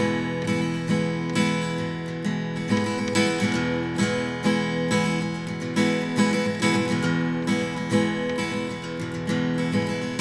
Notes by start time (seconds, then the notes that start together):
0.00 E2 B2 E3 G#3 B3 E4
0.48 E3 G#3 B3 E4
0.60 E3 G#3 B3
0.75 B3 E4
0.89 B2 E3 G#3 B3 E4
1.36 E3 G#3 B3 E4
1.62 E4
1.79 B2 E3
2.09 B2
2.26 B2 E3 G#3
2.57 G#3 B3 E4
2.69 B2 E3 G#3 B3 E4
2.80 G#3 B3 E4
2.94 B3
2.99 G#3 E4
3.16 E3 G#3 B3 E4
3.26 B2 E3 G#3 B3
3.32 E2
3.39 E3 G#3 B3 E4
3.44 B2
3.54 E2 B2
4.00 E2 B2 E3 G#3 B3 E4
4.44 B2 E3 G#3 B3 E4
4.92 B2 E3 G#3 B3 E4
5.05 G#3 B3
5.16 G#3 B3
5.24 E3
5.35 E2 B2
5.48 B2 E3 G#3 B3
5.62 E2 B2 E3
5.77 B2 E3 G#3 B3 E4
6.17 B2 E3 G#3 B3 E4
6.31 G#3 B3 E4
6.36 E3
6.45 G#3 B3 E4
6.63 B2 E3 G#3 B3 E4
6.74 E2 B2 E3 G#3 B3
6.79 E4
6.89 E2 B2 E3 G#3 B3
7.04 E2 B2
7.48 E3 G#3 B3 E4
7.61 E3 G#3 B3
7.75 G#3 B3 E4
7.92 B2 E3 G#3 B3 E4
8.39 B2 E3 G#3 B3 E4
8.52 B2 E3 G#3 B3
8.69 G#3 B3 E4
8.73 E3
8.84 E2
9.01 E2 B2 E3
9.15 E2 B2
9.23 B2
9.28 E2 B2 E3 G#3
9.59 G#3 B3 E4
9.73 E3 G#3 B3 E4
9.85 G#3 B3
9.90 E4
10.02 G#3 B3
10.20 E4